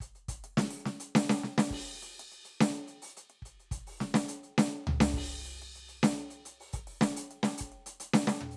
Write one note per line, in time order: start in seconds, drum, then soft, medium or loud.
0.01 closed hi-hat medium
0.01 kick soft
0.16 closed hi-hat soft
0.29 closed hi-hat loud
0.29 kick soft
0.35 kick soft
0.44 closed hi-hat medium
0.58 snare loud
0.71 open hi-hat medium
0.79 hi-hat pedal soft
0.86 snare medium
1.01 closed hi-hat loud
1.16 snare loud
1.30 snare loud
1.44 snare medium
1.58 snare loud
1.65 hi-hat pedal soft
1.71 kick soft
1.71 crash medium
2.03 closed hi-hat medium
2.20 closed hi-hat medium
2.32 closed hi-hat medium
2.45 closed hi-hat medium
2.61 snare loud
2.75 closed hi-hat medium
2.88 closed hi-hat medium
3.03 open hi-hat loud
3.08 hi-hat pedal soft
3.17 open hi-hat soft
3.17 open hi-hat medium
3.30 closed hi-hat soft
3.43 closed hi-hat medium
3.43 kick soft
3.60 closed hi-hat soft
3.72 closed hi-hat loud
3.72 kick soft
3.78 kick soft
3.87 open hi-hat medium
3.93 open hi-hat soft
4.01 snare medium
4.15 snare loud
4.15 hi-hat pedal soft
4.29 closed hi-hat loud
4.44 open hi-hat medium
4.58 snare loud
4.73 closed hi-hat soft
4.88 floor tom loud
5.01 snare loud
5.13 kick soft
5.13 hi-hat pedal medium
5.17 kick soft
5.17 crash loud
5.33 closed hi-hat soft
5.45 closed hi-hat medium
5.62 closed hi-hat soft
5.76 closed hi-hat medium
5.89 closed hi-hat medium
6.04 snare loud
6.18 closed hi-hat medium
6.31 closed hi-hat medium
6.46 closed hi-hat medium
6.61 open hi-hat medium
6.73 open hi-hat loud
6.73 kick soft
6.73 hi-hat pedal soft
6.80 kick soft
6.84 kick soft
6.84 open hi-hat medium
7.02 snare loud
7.17 closed hi-hat loud
7.31 closed hi-hat medium
7.44 snare loud
7.58 closed hi-hat loud
7.58 kick soft
7.72 closed hi-hat soft
7.87 closed hi-hat loud
8.01 closed hi-hat loud
8.14 snare loud
8.28 snare loud
8.37 snare soft
8.41 mid tom medium
8.52 hi-hat pedal medium